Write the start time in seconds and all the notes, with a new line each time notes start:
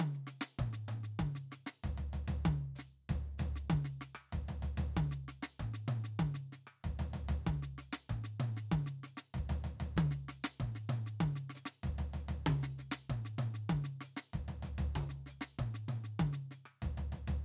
0.00 high tom
0.14 snare
0.27 snare, hi-hat pedal
0.41 snare
0.59 kick, mid tom
0.67 kick
0.73 snare
0.88 hi-hat pedal, mid tom
1.03 snare
1.19 kick, high tom
1.27 kick
1.35 snare
1.51 snare, hi-hat pedal
1.66 snare
1.84 kick, floor tom
1.93 kick
1.98 floor tom
2.13 floor tom, hi-hat pedal
2.28 floor tom
2.45 kick, high tom
2.52 kick
2.75 snare, hi-hat pedal
3.09 kick, floor tom
3.38 floor tom, hi-hat pedal
3.56 snare
3.70 kick, high tom
3.79 kick
3.84 snare
4.01 snare, hi-hat pedal
4.15 cross-stick
4.32 kick, floor tom
4.42 kick
4.48 floor tom
4.62 floor tom, hi-hat pedal
4.77 floor tom
4.97 kick, high tom
5.05 kick
5.11 snare
5.28 snare, hi-hat pedal
5.42 snare
5.59 kick, mid tom
5.66 kick
5.74 snare
5.88 hi-hat pedal, mid tom
6.04 snare
6.19 kick, high tom
6.34 snare
6.52 snare, hi-hat pedal
6.67 cross-stick
6.84 kick, floor tom
6.92 kick
6.99 floor tom
7.13 floor tom, hi-hat pedal
7.29 floor tom
7.46 kick, high tom
7.54 kick
7.57 kick
7.62 snare
7.78 snare, hi-hat pedal
7.93 snare
8.09 kick, mid tom
8.24 snare
8.40 hi-hat pedal, mid tom
8.57 snare
8.71 kick, high tom
8.79 kick
8.86 snare
9.03 snare, hi-hat pedal
9.17 snare
9.34 kick, floor tom
9.49 floor tom
9.64 floor tom, hi-hat pedal
9.80 floor tom
9.96 kick, high tom
10.03 kick
10.11 snare
10.28 snare, hi-hat pedal
10.44 snare
10.60 kick, mid tom
10.68 kick
10.75 snare
10.89 hi-hat pedal, mid tom
11.06 snare
11.20 kick, high tom
11.36 snare
11.49 snare
11.54 snare, hi-hat pedal
11.65 snare
11.83 kick, floor tom
11.98 floor tom
12.13 floor tom, hi-hat pedal
12.28 floor tom
12.46 kick, high tom
12.55 kick
12.63 snare
12.78 snare, hi-hat pedal
12.91 snare
13.10 kick, mid tom
13.17 kick
13.25 snare
13.38 hi-hat pedal, mid tom
13.54 snare
13.69 kick, high tom
13.78 kick
13.84 snare
14.01 snare, hi-hat pedal
14.17 snare
14.33 kick, floor tom
14.48 floor tom
14.62 floor tom, hi-hat pedal
14.78 floor tom
14.95 kick, high tom
15.02 kick
15.09 snare
15.26 snare, hi-hat pedal
15.41 snare
15.59 kick, mid tom
15.74 snare
15.88 hi-hat pedal, mid tom
16.04 snare
16.19 kick, high tom
16.27 kick
16.33 snare
16.51 snare, hi-hat pedal
16.65 cross-stick
16.82 kick, floor tom
16.90 kick
16.97 floor tom
17.12 floor tom, hi-hat pedal
17.27 floor tom